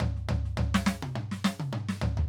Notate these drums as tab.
Snare     |-o-o-oo--oo--o--|
High tom  |-------o---o----|
Mid tom   |--------o---o---|
Floor tom |o-o-o---------oo|